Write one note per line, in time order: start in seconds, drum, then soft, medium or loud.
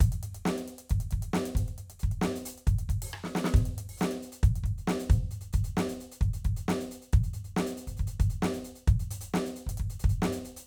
0.01 kick loud
0.01 closed hi-hat medium
0.13 closed hi-hat medium
0.23 closed hi-hat medium
0.35 closed hi-hat medium
0.46 snare loud
0.58 closed hi-hat medium
0.68 closed hi-hat medium
0.79 closed hi-hat medium
0.90 kick loud
0.90 closed hi-hat medium
1.01 closed hi-hat medium
1.11 kick medium
1.11 closed hi-hat medium
1.23 closed hi-hat medium
1.34 snare loud
1.46 closed hi-hat medium
1.56 kick loud
1.56 closed hi-hat medium
1.69 closed hi-hat soft
1.79 closed hi-hat medium
1.90 closed hi-hat medium
2.00 closed hi-hat medium
2.00 kick medium
2.12 closed hi-hat soft
2.22 snare loud
2.36 closed hi-hat medium
2.46 closed hi-hat loud
2.58 closed hi-hat medium
2.67 kick loud
2.67 closed hi-hat medium
2.79 closed hi-hat medium
2.90 kick medium
2.90 closed hi-hat medium
3.03 open hi-hat loud
3.10 hi-hat pedal medium
3.14 cross-stick medium
3.24 snare medium
3.36 snare loud
3.45 snare loud
3.54 kick loud
3.54 closed hi-hat medium
3.66 closed hi-hat medium
3.79 closed hi-hat medium
3.90 open hi-hat medium
3.98 snare loud
3.98 hi-hat pedal medium
4.12 closed hi-hat medium
4.23 closed hi-hat medium
4.33 closed hi-hat medium
4.44 kick loud
4.44 closed hi-hat medium
4.56 closed hi-hat medium
4.64 kick medium
4.79 closed hi-hat soft
4.88 snare loud
5.00 closed hi-hat medium
5.10 closed hi-hat medium
5.10 kick loud
5.31 closed hi-hat medium
5.53 closed hi-hat medium
5.53 kick loud
5.65 closed hi-hat medium
5.77 snare loud
5.90 closed hi-hat medium
6.01 closed hi-hat medium
6.12 closed hi-hat medium
6.22 kick loud
6.22 closed hi-hat soft
6.34 closed hi-hat medium
6.45 kick medium
6.45 closed hi-hat medium
6.57 closed hi-hat medium
6.69 snare loud
6.81 closed hi-hat medium
6.92 closed hi-hat medium
7.02 closed hi-hat medium
7.13 kick loud
7.13 closed hi-hat medium
7.24 closed hi-hat medium
7.34 closed hi-hat medium
7.45 closed hi-hat soft
7.57 snare loud
7.67 closed hi-hat medium
7.78 closed hi-hat medium
7.88 kick soft
7.97 closed hi-hat soft
7.97 kick medium
8.08 closed hi-hat medium
8.20 closed hi-hat medium
8.20 kick loud
8.43 snare loud
8.54 closed hi-hat medium
8.65 closed hi-hat medium
8.76 closed hi-hat medium
8.88 kick loud
8.88 closed hi-hat medium
9.00 closed hi-hat medium
9.11 closed hi-hat loud
9.21 closed hi-hat loud
9.34 snare loud
9.46 closed hi-hat medium
9.67 kick medium
9.67 closed hi-hat medium
9.78 kick medium
9.78 closed hi-hat medium
9.90 closed hi-hat medium
10.00 closed hi-hat medium
10.05 kick loud
10.10 closed hi-hat medium
10.23 snare loud
10.33 closed hi-hat medium
10.46 closed hi-hat medium
10.57 closed hi-hat medium